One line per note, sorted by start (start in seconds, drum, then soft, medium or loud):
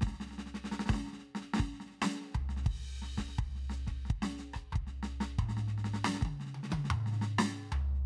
0.01 kick soft
0.01 snare medium
0.07 snare medium
0.12 snare soft
0.20 snare medium
0.26 snare soft
0.31 snare soft
0.38 snare soft
0.46 snare soft
0.54 snare soft
0.62 snare soft
0.64 snare soft
0.71 snare soft
0.79 snare soft
0.86 kick medium
0.86 snare soft
0.93 snare medium
0.98 snare medium
1.04 snare soft
1.06 snare soft
1.12 snare soft
1.18 snare soft
1.35 snare medium
1.40 snare soft
1.54 snare medium
1.57 kick soft
1.57 snare medium
1.60 snare medium
1.63 snare soft
1.66 snare soft
1.71 snare soft
1.73 snare soft
1.80 snare soft
1.85 snare soft
1.90 snare soft
1.98 snare soft
2.02 snare loud
2.06 snare medium
2.15 snare soft
2.21 snare soft
2.25 snare soft
2.31 snare soft
2.31 floor tom loud
2.35 kick soft
2.49 snare soft
2.56 snare soft
2.62 kick medium
2.62 snare soft
2.68 snare soft
2.68 crash medium
2.74 snare soft
3.02 snare soft
3.02 hi-hat pedal soft
3.18 kick soft
3.18 snare medium
3.28 snare soft
3.38 kick soft
3.38 floor tom medium
3.55 snare soft
3.70 snare soft
3.70 hi-hat pedal soft
3.87 kick soft
3.87 snare soft
4.05 snare soft
4.10 kick soft
4.22 snare loud
4.38 snare soft
4.38 hi-hat pedal medium
4.54 kick soft
4.54 cross-stick medium
4.72 kick soft
4.72 floor tom medium
4.87 snare soft
5.03 snare medium
5.03 hi-hat pedal soft
5.20 snare medium
5.39 kick soft
5.39 mid tom loud
5.47 kick soft
5.47 snare medium
5.57 snare soft
5.68 snare soft
5.78 snare soft
5.84 snare soft
5.94 snare soft
6.04 snare loud
6.21 kick soft
6.21 snare soft
6.21 high tom medium
6.40 snare soft
6.46 snare soft
6.54 high tom medium
6.63 snare soft
6.69 snare soft
6.69 high tom loud
6.73 kick soft
6.84 snare soft
6.90 snare soft
6.90 mid tom loud
7.06 snare soft
7.12 snare soft
7.16 snare soft
7.21 snare medium
7.39 snare loud
7.61 snare soft
7.72 kick soft
7.72 floor tom loud
7.94 snare soft